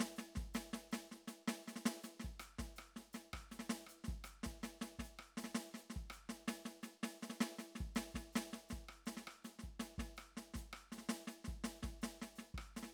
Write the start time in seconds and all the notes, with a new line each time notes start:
0.01 snare
0.17 snare, hi-hat pedal
0.36 kick, snare
0.55 snare, hi-hat pedal
0.74 snare
0.92 snare, hi-hat pedal
1.12 snare
1.28 snare, hi-hat pedal
1.49 snare
1.69 snare, hi-hat pedal
1.77 snare
1.86 snare
2.04 snare, hi-hat pedal
2.21 snare
2.25 kick
2.41 cross-stick, hi-hat pedal
2.59 kick, snare
2.77 cross-stick, hi-hat pedal
2.97 snare
3.14 snare, hi-hat pedal
3.34 kick, cross-stick
3.52 snare, hi-hat pedal
3.60 snare
3.70 snare
3.88 cross-stick, hi-hat pedal
4.05 snare
4.09 kick
4.25 cross-stick, hi-hat pedal
4.44 kick, snare
4.64 snare, hi-hat pedal
4.82 snare
5.00 kick, snare
5.05 hi-hat pedal
5.20 cross-stick
5.38 snare, hi-hat pedal
5.45 snare
5.56 snare
5.75 snare, hi-hat pedal
5.91 snare
5.97 kick
6.11 cross-stick, hi-hat pedal
6.30 snare
6.49 snare, hi-hat pedal
6.66 snare
6.84 snare, hi-hat pedal
7.04 snare
7.22 snare, hi-hat pedal
7.31 snare
7.41 snare
7.59 snare, hi-hat pedal
7.76 snare
7.81 kick
7.96 snare, hi-hat pedal
8.15 kick, snare
8.34 snare, hi-hat pedal
8.54 snare
8.70 kick, snare, hi-hat pedal
8.90 cross-stick
9.07 snare, hi-hat pedal
9.18 snare
9.28 cross-stick
9.45 snare, hi-hat pedal
9.60 snare
9.65 kick
9.80 snare, hi-hat pedal
9.99 kick, snare
10.18 cross-stick, hi-hat pedal
10.38 snare
10.55 kick, snare, hi-hat pedal
10.74 cross-stick
10.93 snare, hi-hat pedal
10.99 snare
11.10 snare
11.28 snare, hi-hat pedal
11.45 kick, snare
11.65 snare, hi-hat pedal
11.84 kick, snare
12.03 snare, hi-hat pedal
12.23 snare
12.36 snare, hi-hat pedal
12.55 kick, cross-stick
12.77 snare, hi-hat pedal
12.84 snare